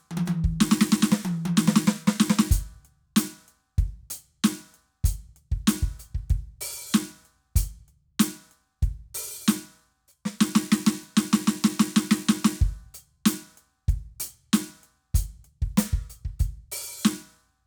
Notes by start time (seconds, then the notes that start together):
0.12 high tom
0.18 high tom
0.27 hi-hat pedal, high tom
0.45 kick
0.62 snare
0.72 snare
0.82 snare
0.89 snare, hi-hat pedal
1.04 snare
1.13 snare
1.24 hi-hat pedal, high tom
1.46 high tom
1.58 snare, hi-hat pedal
1.69 snare
1.77 snare
1.88 snare
2.08 snare
2.21 snare, hi-hat pedal
2.31 snare
2.40 snare
2.52 closed hi-hat, kick
2.86 closed hi-hat
3.17 closed hi-hat, snare
3.49 closed hi-hat
3.79 kick, closed hi-hat
4.11 open hi-hat
4.45 closed hi-hat, snare, hi-hat pedal
4.75 closed hi-hat
5.05 closed hi-hat, kick
5.37 closed hi-hat
5.53 kick
5.68 closed hi-hat, snare
5.83 kick
6.01 closed hi-hat
6.16 kick
6.31 kick, closed hi-hat
6.62 open hi-hat
6.95 snare, closed hi-hat, hi-hat pedal
7.26 closed hi-hat
7.57 closed hi-hat, kick
7.89 closed hi-hat
8.21 closed hi-hat, snare
8.52 closed hi-hat
8.83 kick, closed hi-hat
9.16 open hi-hat
9.49 open hi-hat, snare, hi-hat pedal
10.09 hi-hat pedal
10.26 snare
10.40 snare, hi-hat pedal
10.56 snare
10.71 snare, hi-hat pedal
10.88 snare
11.03 hi-hat pedal
11.18 snare
11.34 snare
11.48 snare
11.64 snare, hi-hat pedal
11.81 snare
11.96 snare, hi-hat pedal
12.12 snare
12.27 snare, hi-hat pedal
12.46 snare
12.62 kick
12.95 closed hi-hat
13.27 closed hi-hat, snare
13.58 closed hi-hat
13.89 kick, closed hi-hat
14.21 open hi-hat
14.54 closed hi-hat, snare, hi-hat pedal
14.84 closed hi-hat
15.15 closed hi-hat, kick
15.45 closed hi-hat
15.63 kick
15.79 closed hi-hat, snare
15.94 kick
16.11 closed hi-hat
16.26 kick
16.41 closed hi-hat, kick
16.73 open hi-hat
17.06 open hi-hat, snare, hi-hat pedal